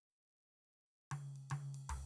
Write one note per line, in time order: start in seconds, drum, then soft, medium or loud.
1.11 high tom medium
1.11 ride soft
1.36 ride soft
1.50 high tom medium
1.50 ride soft
1.74 ride soft
1.89 floor tom medium
1.89 ride medium